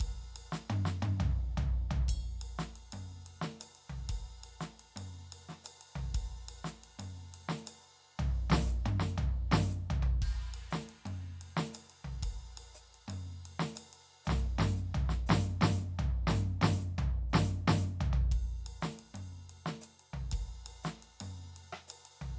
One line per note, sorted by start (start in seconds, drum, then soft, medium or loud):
0.01 kick medium
0.01 ride loud
0.36 ride loud
0.53 snare medium
0.53 hi-hat pedal medium
0.70 mid tom loud
0.86 snare medium
1.03 mid tom loud
1.20 floor tom loud
1.57 floor tom loud
1.57 hi-hat pedal soft
1.91 floor tom loud
2.09 kick medium
2.09 ride bell loud
2.42 ride loud
2.59 snare medium
2.59 hi-hat pedal medium
2.76 ride medium
2.93 mid tom medium
2.93 ride loud
3.27 ride medium
3.42 snare medium
3.60 hi-hat pedal medium
3.60 ride loud
3.76 ride medium
3.90 floor tom medium
4.10 kick medium
4.10 ride loud
4.44 ride loud
4.61 snare medium
4.61 hi-hat pedal medium
4.80 ride medium
4.97 mid tom medium
4.97 ride loud
5.10 hi-hat pedal soft
5.33 ride loud
5.49 snare soft
5.64 hi-hat pedal medium
5.64 ride loud
5.82 ride medium
5.96 floor tom medium
6.15 kick medium
6.15 ride loud
6.49 ride loud
6.65 snare medium
6.65 hi-hat pedal medium
6.84 ride medium
6.99 mid tom medium
6.99 ride loud
7.14 hi-hat pedal soft
7.34 ride medium
7.49 snare medium
7.67 hi-hat pedal medium
7.67 ride loud
8.19 floor tom loud
8.50 snare loud
8.50 floor tom loud
8.68 hi-hat pedal medium
8.86 mid tom loud
9.00 snare medium
9.18 floor tom loud
9.52 snare loud
9.52 mid tom loud
9.70 hi-hat pedal medium
9.91 floor tom loud
10.03 floor tom loud
10.22 kick medium
10.22 ride medium
10.54 ride loud
10.71 snare medium
10.71 hi-hat pedal medium
10.89 ride medium
11.06 mid tom loud
11.06 ride medium
11.42 ride medium
11.57 snare loud
11.74 hi-hat pedal medium
11.74 ride loud
11.90 ride medium
12.05 floor tom medium
12.23 kick medium
12.23 ride loud
12.58 ride loud
12.75 hi-hat pedal medium
12.95 ride medium
13.08 mid tom medium
13.08 ride loud
13.46 ride medium
13.60 snare medium
13.75 hi-hat pedal medium
13.75 ride loud
13.93 ride medium
14.25 floor tom loud
14.25 hi-hat pedal medium
14.30 snare medium
14.59 snare loud
14.59 mid tom loud
14.77 hi-hat pedal soft
14.95 floor tom loud
15.10 snare medium
15.27 snare loud
15.27 hi-hat pedal medium
15.27 mid tom loud
15.62 snare loud
15.62 mid tom loud
15.78 hi-hat pedal soft
15.99 floor tom loud
16.28 snare loud
16.28 hi-hat pedal soft
16.28 mid tom loud
16.62 snare loud
16.62 mid tom loud
16.80 hi-hat pedal soft
16.99 floor tom loud
17.30 hi-hat pedal soft
17.30 mid tom loud
17.35 snare loud
17.68 snare loud
17.68 mid tom loud
17.82 hi-hat pedal soft
18.01 floor tom loud
18.13 floor tom loud
18.32 kick medium
18.32 ride medium
18.61 ride soft
18.67 ride loud
18.82 snare medium
18.82 hi-hat pedal medium
18.99 ride medium
19.15 mid tom medium
19.15 ride medium
19.50 ride medium
19.66 snare medium
19.81 hi-hat pedal medium
19.81 ride medium
20.00 ride medium
20.13 kick soft
20.13 floor tom medium
20.32 kick medium
20.32 ride loud
20.67 ride loud
20.84 snare medium
20.84 hi-hat pedal medium
21.03 ride medium
21.21 mid tom medium
21.21 ride loud
21.57 ride medium
21.73 cross-stick medium
21.88 hi-hat pedal medium
21.88 ride loud
22.06 ride medium
22.22 floor tom medium